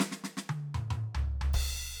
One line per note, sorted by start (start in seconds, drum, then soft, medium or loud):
0.01 snare loud
0.11 snare medium
0.24 snare medium
0.37 snare medium
0.49 high tom loud
0.74 mid tom loud
0.90 mid tom loud
1.15 floor tom loud
1.41 floor tom loud
1.53 kick medium
1.53 crash loud